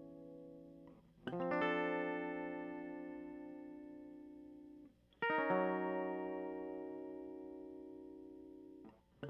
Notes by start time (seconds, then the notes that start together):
1.34 F3
1.41 C4
1.52 D4
1.62 A4
5.23 A#4
5.30 D#4
5.39 C#4
5.51 F#3